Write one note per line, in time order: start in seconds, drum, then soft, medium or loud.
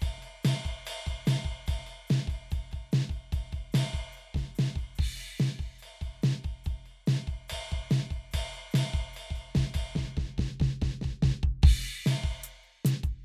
0.01 kick medium
0.01 hi-hat pedal medium
0.01 ride bell medium
0.19 snare soft
0.23 ride medium
0.43 snare loud
0.43 hi-hat pedal medium
0.43 ride loud
0.65 kick soft
0.65 ride soft
0.86 hi-hat pedal medium
0.86 ride loud
1.07 kick soft
1.07 ride soft
1.26 snare loud
1.26 hi-hat pedal medium
1.26 ride bell loud
1.45 kick soft
1.67 kick medium
1.67 hi-hat pedal medium
1.67 ride medium
1.80 snare soft
1.87 ride medium
2.08 snare loud
2.08 hi-hat pedal medium
2.08 ride bell medium
2.28 kick medium
2.28 ride soft
2.51 kick medium
2.51 hi-hat pedal medium
2.51 ride bell soft
2.72 kick soft
2.72 ride soft
2.92 snare loud
2.92 hi-hat pedal medium
2.92 ride bell soft
3.10 kick soft
3.10 ride soft
3.33 kick medium
3.33 hi-hat pedal medium
3.33 ride bell medium
3.53 kick soft
3.53 ride soft
3.73 snare loud
3.73 hi-hat pedal medium
3.73 ride loud
3.94 kick soft
3.94 ride soft
4.13 hi-hat pedal medium
4.18 ride bell soft
4.35 kick medium
4.35 snare medium
4.35 ride soft
4.56 snare loud
4.56 hi-hat pedal medium
4.56 ride bell medium
4.76 kick soft
4.76 ride soft
4.96 kick medium
4.96 hi-hat pedal medium
4.96 crash loud
5.17 ride soft
5.38 snare loud
5.38 hi-hat pedal medium
5.38 ride bell soft
5.60 kick soft
5.60 ride soft
5.79 hi-hat pedal medium
5.83 ride bell medium
6.02 kick soft
6.02 ride soft
6.23 snare loud
6.23 hi-hat pedal medium
6.23 ride bell soft
6.44 kick soft
6.44 ride soft
6.64 kick medium
6.64 hi-hat pedal medium
6.64 ride bell soft
6.86 ride soft
7.07 snare loud
7.07 hi-hat pedal medium
7.07 ride bell medium
7.28 kick soft
7.28 ride soft
7.49 kick soft
7.49 hi-hat pedal medium
7.49 ride bell loud
7.70 kick medium
7.70 ride soft
7.91 snare loud
7.91 hi-hat pedal medium
7.91 ride bell medium
8.11 kick soft
8.11 ride soft
8.32 kick medium
8.32 hi-hat pedal medium
8.32 ride loud
8.54 ride soft
8.71 snare loud
8.71 hi-hat pedal medium
8.76 ride loud
8.94 kick medium
8.94 ride soft
9.14 hi-hat pedal medium
9.14 ride medium
9.31 kick soft
9.36 ride soft
9.56 kick medium
9.56 snare loud
9.56 ride bell medium
9.75 kick medium
9.75 ride loud
9.96 kick soft
9.96 snare loud
9.96 floor tom loud
10.17 kick medium
10.17 snare medium
10.17 floor tom medium
10.39 kick medium
10.39 snare loud
10.39 floor tom loud
10.60 kick medium
10.60 snare medium
10.60 floor tom medium
10.82 kick medium
10.82 snare loud
10.82 floor tom loud
11.02 kick soft
11.02 snare medium
11.02 floor tom medium
11.23 kick medium
11.23 snare loud
11.23 floor tom loud
11.44 kick medium
11.63 kick loud
11.63 crash loud
12.05 snare loud
12.05 hi-hat pedal medium
12.05 ride loud
12.24 kick medium
12.44 closed hi-hat loud
12.64 closed hi-hat soft
12.85 closed hi-hat loud
12.85 snare loud
13.04 closed hi-hat soft
13.04 kick medium